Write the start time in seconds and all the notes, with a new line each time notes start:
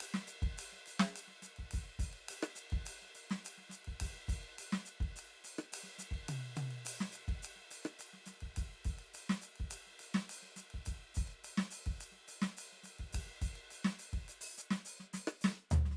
0.01 hi-hat pedal, ride
0.14 snare
0.28 hi-hat pedal, ride
0.42 kick, ride
0.58 hi-hat pedal, ride
0.73 snare
0.86 hi-hat pedal, ride
1.00 snare, ride
1.16 hi-hat pedal, ride
1.28 snare
1.42 snare, hi-hat pedal, ride
1.57 kick, ride
1.71 kick, hi-hat pedal, ride
1.99 kick, hi-hat pedal, ride
2.13 ride
2.29 hi-hat pedal, ride
2.43 cross-stick
2.56 hi-hat pedal, ride
2.71 kick, ride
2.86 hi-hat pedal, ride
3.02 snare
3.15 hi-hat pedal, ride
3.30 snare, ride
3.45 hi-hat pedal, ride
3.58 snare
3.70 snare, hi-hat pedal, ride
3.85 kick, ride
4.00 kick, hi-hat pedal, ride
4.15 snare
4.29 kick, hi-hat pedal, ride
4.44 ride
4.59 hi-hat pedal, ride
4.73 snare
4.86 hi-hat pedal, ride
5.01 kick, ride
5.16 hi-hat pedal, ride
5.45 hi-hat pedal, ride
5.59 cross-stick, ride
5.73 hi-hat pedal, ride
5.84 snare
5.99 snare, hi-hat pedal, ride
6.12 kick, ride
6.29 closed hi-hat, hi-hat pedal, high tom, ride
6.56 closed hi-hat, hi-hat pedal, high tom, ride
6.71 ride
6.85 hi-hat pedal, ride
7.01 snare
7.12 hi-hat pedal, ride
7.28 kick, ride
7.43 hi-hat pedal, ride
7.56 snare
7.71 hi-hat pedal, ride
7.85 cross-stick, ride
7.99 hi-hat pedal, ride
8.14 snare
8.26 snare, hi-hat pedal, ride
8.41 kick, ride
8.56 kick, hi-hat pedal, ride
8.70 snare
8.85 kick, hi-hat pedal, ride
8.99 ride
9.14 hi-hat pedal, ride
9.30 snare
9.42 hi-hat pedal, ride
9.56 ride
9.60 kick
9.71 hi-hat pedal, ride
9.87 snare
10.00 hi-hat pedal, ride
10.15 snare, ride
10.30 hi-hat pedal, ride
10.43 snare
10.57 snare, hi-hat pedal, ride
10.71 kick, ride
10.86 kick, hi-hat pedal, ride
11.15 kick, hi-hat pedal, ride
11.28 ride
11.44 hi-hat pedal, ride
11.58 snare
11.71 hi-hat pedal, ride
11.86 kick, ride
12.01 hi-hat pedal, ride
12.12 snare
12.28 hi-hat pedal, ride
12.42 snare, ride
12.57 hi-hat pedal, ride
12.73 snare
12.84 snare, hi-hat pedal, ride
12.99 kick, ride
13.13 kick, hi-hat pedal, ride
13.27 snare
13.42 kick, hi-hat pedal, ride
13.56 ride
13.71 hi-hat pedal, ride
13.85 snare
13.99 hi-hat pedal, ride
14.13 kick, ride
14.29 hi-hat pedal, ride
14.41 open hi-hat
14.58 hi-hat pedal
14.71 snare
14.85 hi-hat pedal
15.00 snare
15.14 snare, hi-hat pedal
15.28 cross-stick
15.42 snare, hi-hat pedal
15.71 floor tom, hi-hat pedal
15.86 snare
15.92 snare